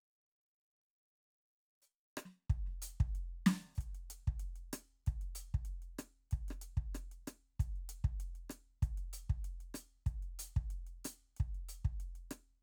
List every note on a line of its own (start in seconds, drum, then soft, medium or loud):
1.82 hi-hat pedal soft
2.17 cross-stick medium
2.25 snare soft
2.50 kick medium
2.50 closed hi-hat soft
2.66 snare soft
2.82 closed hi-hat medium
3.00 kick medium
3.15 closed hi-hat soft
3.46 snare loud
3.46 open hi-hat medium
3.63 snare soft
3.75 kick soft
3.75 hi-hat pedal soft
3.81 closed hi-hat soft
3.95 closed hi-hat soft
4.10 closed hi-hat medium
4.27 kick soft
4.40 closed hi-hat soft
4.56 closed hi-hat soft
4.73 cross-stick medium
4.73 closed hi-hat loud
5.07 kick soft
5.07 closed hi-hat soft
5.21 closed hi-hat soft
5.35 closed hi-hat medium
5.54 kick soft
5.65 closed hi-hat soft
5.82 closed hi-hat soft
5.99 cross-stick medium
5.99 closed hi-hat medium
6.31 kick soft
6.31 closed hi-hat soft
6.48 cross-stick soft
6.48 closed hi-hat soft
6.62 closed hi-hat medium
6.77 kick soft
6.95 cross-stick medium
6.95 closed hi-hat medium
7.12 closed hi-hat soft
7.27 cross-stick medium
7.27 closed hi-hat medium
7.60 kick soft
7.60 closed hi-hat soft
7.76 closed hi-hat soft
7.89 closed hi-hat medium
8.04 kick medium
8.20 closed hi-hat soft
8.35 closed hi-hat soft
8.50 cross-stick medium
8.50 closed hi-hat medium
8.82 kick medium
8.82 closed hi-hat soft
8.98 closed hi-hat soft
9.13 closed hi-hat medium
9.30 kick soft
9.45 closed hi-hat soft
9.61 closed hi-hat soft
9.74 closed hi-hat medium
9.74 cross-stick medium
10.06 kick soft
10.06 closed hi-hat soft
10.23 closed hi-hat soft
10.39 closed hi-hat loud
10.56 kick soft
10.71 closed hi-hat soft
10.87 closed hi-hat soft
11.05 closed hi-hat loud
11.05 cross-stick medium
11.37 kick soft
11.37 closed hi-hat soft
11.55 closed hi-hat soft
11.69 closed hi-hat medium
11.85 kick soft
12.00 closed hi-hat soft
12.16 closed hi-hat soft
12.31 cross-stick medium
12.31 closed hi-hat medium